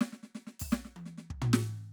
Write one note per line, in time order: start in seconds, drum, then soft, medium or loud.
0.01 snare loud
0.13 snare soft
0.23 snare soft
0.35 snare medium
0.47 snare soft
0.60 kick medium
0.60 percussion loud
0.72 snare loud
0.72 percussion medium
0.85 snare soft
0.96 high tom medium
0.96 percussion soft
1.06 snare soft
1.18 snare soft
1.31 kick medium
1.42 floor tom loud
1.54 snare loud